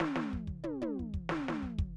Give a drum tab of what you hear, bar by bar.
SD |oo------oo--|
T1 |----oo------|
FT |oo--oo--oo--|
BD |--gg--gg--go|